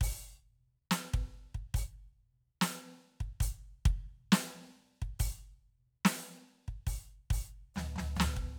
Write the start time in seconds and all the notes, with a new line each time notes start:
0.01 open hi-hat, kick
0.91 open hi-hat, snare
1.14 kick
1.55 kick
1.74 open hi-hat, kick
2.62 open hi-hat, snare
3.21 kick
3.41 open hi-hat, kick
3.86 kick
4.32 open hi-hat, snare
5.02 kick
5.20 open hi-hat, kick
6.05 open hi-hat, snare
6.68 kick
6.87 open hi-hat, kick
7.31 open hi-hat, kick, ride
7.75 snare, floor tom, hi-hat pedal
7.96 snare, floor tom
8.16 floor tom, hi-hat pedal
8.20 snare
8.37 kick